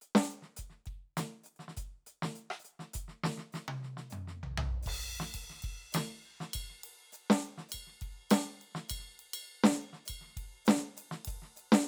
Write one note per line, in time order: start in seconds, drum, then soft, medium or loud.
0.01 closed hi-hat soft
0.15 snare loud
0.23 hi-hat pedal medium
0.30 closed hi-hat soft
0.42 snare soft
0.49 snare soft
0.57 closed hi-hat medium
0.57 kick soft
0.70 snare soft
0.75 snare soft
0.86 kick soft
0.86 closed hi-hat soft
1.17 closed hi-hat medium
1.17 snare medium
1.44 closed hi-hat soft
1.44 hi-hat pedal soft
1.59 snare soft
1.68 snare soft
1.77 closed hi-hat medium
1.77 kick soft
1.86 kick soft
2.07 closed hi-hat medium
2.23 snare medium
2.35 closed hi-hat soft
2.50 cross-stick medium
2.59 hi-hat pedal soft
2.65 closed hi-hat soft
2.79 snare soft
2.94 closed hi-hat medium
2.94 kick soft
3.08 snare soft
3.24 snare loud
3.38 snare soft
3.52 snare medium
3.52 hi-hat pedal soft
3.68 high tom loud
3.83 snare soft
3.97 snare soft
4.10 hi-hat pedal medium
4.10 mid tom medium
4.28 snare soft
4.43 floor tom medium
4.58 floor tom loud
4.83 kick medium
4.83 hi-hat pedal medium
4.87 crash loud
4.93 kick soft
4.97 kick soft
5.08 kick soft
5.20 snare medium
5.34 kick soft
5.34 ride loud
5.50 snare soft
5.55 snare soft
5.62 kick medium
5.62 snare soft
5.62 ride medium
5.74 kick soft
5.92 snare loud
5.92 hi-hat pedal medium
5.92 ride bell loud
6.22 hi-hat pedal soft
6.22 ride soft
6.40 snare medium
6.53 kick soft
6.53 snare soft
6.53 hi-hat pedal soft
6.53 ride bell loud
6.64 kick soft
6.70 snare soft
6.84 ride loud
7.12 hi-hat pedal medium
7.12 ride medium
7.30 snare loud
7.45 ride soft
7.58 snare soft
7.69 hi-hat pedal medium
7.69 ride bell loud
7.74 kick soft
7.87 snare soft
7.92 snare soft
8.01 kick soft
8.01 ride medium
8.11 kick soft
8.30 snare loud
8.30 hi-hat pedal medium
8.30 ride bell loud
8.45 snare soft
8.62 ride soft
8.75 snare medium
8.89 kick soft
8.89 hi-hat pedal medium
8.89 ride bell loud
8.99 snare soft
9.04 snare soft
9.07 snare soft
9.19 ride medium
9.34 ride bell loud
9.43 hi-hat pedal soft
9.48 ride soft
9.64 snare loud
9.71 snare soft
9.71 hi-hat pedal soft
9.82 ride soft
9.93 snare soft
10.05 hi-hat pedal medium
10.05 ride bell loud
10.10 kick soft
10.21 snare soft
10.27 snare soft
10.32 snare soft
10.37 kick soft
10.37 ride medium
10.65 snare loud
10.65 hi-hat pedal medium
10.65 ride medium
10.77 snare soft
10.97 hi-hat pedal medium
10.97 ride medium
11.11 snare medium
11.25 kick soft
11.25 hi-hat pedal medium
11.25 ride loud
11.33 kick soft
11.37 kick soft
11.42 snare soft
11.56 hi-hat pedal medium
11.56 ride medium
11.72 snare loud